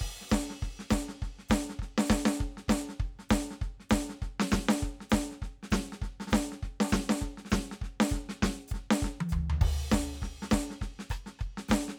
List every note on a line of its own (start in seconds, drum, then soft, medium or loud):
0.01 kick medium
0.21 snare soft
0.29 kick medium
0.29 snare loud
0.29 hi-hat pedal medium
0.50 snare soft
0.62 kick medium
0.62 snare soft
0.79 snare medium
0.90 kick medium
0.90 snare loud
0.90 hi-hat pedal medium
1.08 snare soft
1.22 kick medium
1.22 snare soft
1.39 snare soft
1.49 kick medium
1.49 snare loud
1.49 hi-hat pedal medium
1.70 snare soft
1.79 kick medium
1.79 snare soft
1.98 snare loud
2.07 kick medium
2.07 snare loud
2.07 hi-hat pedal medium
2.25 snare loud
2.39 kick medium
2.39 snare soft
2.57 snare soft
2.68 kick medium
2.68 snare loud
2.68 hi-hat pedal medium
2.89 snare soft
3.00 kick medium
3.00 cross-stick soft
3.19 snare soft
3.29 kick medium
3.29 snare loud
3.29 hi-hat pedal medium
3.51 snare soft
3.62 kick medium
3.62 snare soft
3.80 snare soft
3.90 kick medium
3.90 snare loud
3.90 hi-hat pedal medium
4.09 snare soft
4.22 kick medium
4.22 snare soft
4.40 snare loud
4.51 kick medium
4.51 snare loud
4.51 hi-hat pedal medium
4.69 snare loud
4.82 kick medium
4.82 snare soft
5.01 snare soft
5.10 kick medium
5.10 snare loud
5.10 hi-hat pedal medium
5.32 snare soft
5.42 kick medium
5.42 snare soft
5.63 snare soft
5.71 kick medium
5.71 snare loud
5.71 hi-hat pedal medium
5.92 snare medium
6.02 kick medium
6.02 snare soft
6.20 snare medium
6.27 snare medium
6.27 hi-hat pedal medium
6.33 kick medium
6.33 snare loud
6.52 snare soft
6.63 kick medium
6.63 snare soft
6.80 snare loud
6.89 kick medium
6.89 snare loud
6.89 hi-hat pedal medium
7.09 snare loud
7.21 kick medium
7.21 snare soft
7.38 snare soft
7.45 snare soft
7.50 kick medium
7.50 snare loud
7.50 hi-hat pedal medium
7.71 snare medium
7.82 kick medium
7.82 snare soft
8.00 snare loud
8.08 kick medium
8.08 hi-hat pedal medium
8.13 snare soft
8.29 snare medium
8.43 kick medium
8.43 snare loud
8.68 kick medium
8.68 hi-hat pedal medium
8.74 snare soft
8.91 snare loud
9.02 kick medium
9.02 snare medium
9.21 high tom loud
9.29 kick medium
9.29 hi-hat pedal medium
9.33 floor tom loud
9.50 floor tom loud
9.61 kick loud
9.61 crash loud
9.91 kick medium
9.91 snare loud
9.91 hi-hat pedal medium
10.14 snare soft
10.22 kick medium
10.22 snare medium
10.42 snare medium
10.51 kick medium
10.51 snare loud
10.51 hi-hat pedal medium
10.70 snare soft
10.81 kick medium
10.81 snare soft
10.99 snare medium
11.10 kick medium
11.10 cross-stick medium
11.10 hi-hat pedal medium
11.26 snare soft
11.39 kick medium
11.39 cross-stick soft
11.57 snare medium
11.68 kick medium
11.68 snare medium
11.68 hi-hat pedal medium
11.71 snare loud
11.88 snare medium